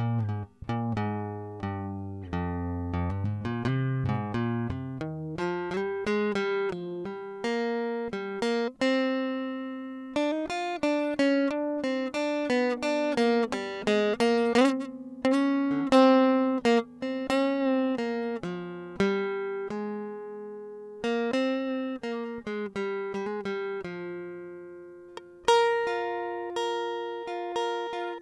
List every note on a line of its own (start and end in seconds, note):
0.00 0.21 A#2
0.21 0.48 G#2
0.71 0.97 A#2
0.98 1.63 G#2
1.65 1.96 G2
2.34 2.95 F2
2.95 3.11 F2
3.11 3.26 G2
3.27 3.51 G#2
3.46 3.66 A#2
3.67 4.25 C3
4.07 4.37 G#2
4.36 4.70 A#2
4.72 5.02 C3
5.02 5.39 D#3
5.40 5.71 F3
5.72 6.07 G3
6.08 6.35 G#3
6.37 6.71 G3
6.71 7.06 F3
7.07 7.53 G3
7.45 8.14 A#3
8.14 8.47 G3
8.43 8.73 A#3
8.83 10.21 C4
10.17 10.33 D4
10.33 10.50 D#4
10.51 10.81 F4
10.84 11.19 D4
11.20 11.60 C#4
11.52 11.92 D4
11.85 12.13 C4
12.15 12.63 D4
12.51 12.80 B3
12.84 13.18 D4
13.19 13.49 A#3
13.54 13.87 G3
13.88 14.18 G#3
14.21 14.55 A#3
14.57 14.70 C4
15.26 15.91 C#4
15.93 16.63 C4
16.66 16.88 A#3
17.04 17.29 C4
17.31 17.61 C#4
17.62 17.99 C4
18.00 18.42 A#3
18.45 18.99 F3
19.01 19.71 G3
19.72 21.10 G#3
21.05 21.34 A#3
21.35 22.01 C4
22.05 22.46 A#3
22.48 22.71 G#3
22.77 23.15 G3
23.16 23.45 G#3
23.47 23.85 G3
23.86 25.88 F3
25.49 26.53 A#4
25.88 27.25 F4
26.57 27.55 A#4
27.29 27.90 F4
27.57 28.19 A#4
27.94 28.19 F4